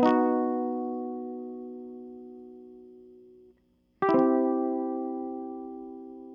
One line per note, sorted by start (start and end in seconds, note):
0.00 3.55 B3
0.00 3.54 D#4
0.06 3.54 F#4
4.03 6.35 G4
4.09 6.35 E4
4.15 6.35 C4